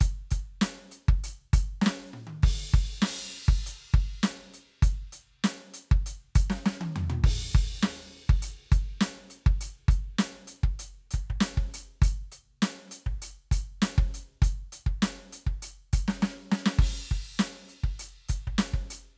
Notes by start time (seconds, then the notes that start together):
0.01 closed hi-hat, kick
0.31 closed hi-hat, kick
0.62 closed hi-hat, snare
0.92 closed hi-hat
1.09 kick
1.24 closed hi-hat
1.54 closed hi-hat, kick
1.82 snare
1.86 snare, hi-hat pedal
2.07 hi-hat pedal
2.14 mid tom
2.27 high tom
2.43 kick, ride
2.74 kick
3.02 snare, crash
3.28 closed hi-hat
3.48 kick
3.67 closed hi-hat
3.94 kick
4.23 closed hi-hat, snare
4.54 closed hi-hat
4.83 closed hi-hat, kick
5.13 closed hi-hat
5.44 closed hi-hat, snare
5.74 closed hi-hat
5.92 kick
6.06 closed hi-hat
6.36 closed hi-hat, kick
6.50 snare
6.66 snare
6.81 high tom
6.96 floor tom
7.10 mid tom
7.24 kick, ride
7.55 kick, snare
7.83 snare, ride
8.30 kick
8.43 closed hi-hat
8.72 closed hi-hat, kick
9.01 closed hi-hat, snare
9.30 closed hi-hat
9.46 kick
9.61 closed hi-hat
9.89 closed hi-hat, kick
10.19 closed hi-hat, snare
10.48 closed hi-hat
10.64 kick
10.79 closed hi-hat
11.11 closed hi-hat, kick
11.30 kick
11.41 closed hi-hat, snare
11.58 kick
11.74 closed hi-hat
12.02 closed hi-hat, kick
12.32 closed hi-hat
12.62 closed hi-hat, snare
12.88 closed hi-hat, snare
13.06 kick
13.22 closed hi-hat
13.52 closed hi-hat, kick
13.82 closed hi-hat, snare
13.98 kick
14.14 closed hi-hat
14.42 closed hi-hat, kick
14.73 closed hi-hat
14.87 kick
15.03 closed hi-hat, snare
15.33 closed hi-hat
15.47 kick
15.63 closed hi-hat
15.93 closed hi-hat, kick
16.08 snare
16.23 snare
16.52 snare
16.66 snare
16.79 kick, crash
17.11 kick
17.39 closed hi-hat, snare
17.69 closed hi-hat
17.84 kick, snare
18.00 closed hi-hat
18.29 closed hi-hat, kick
18.47 kick
18.59 closed hi-hat, snare
18.74 kick
18.91 closed hi-hat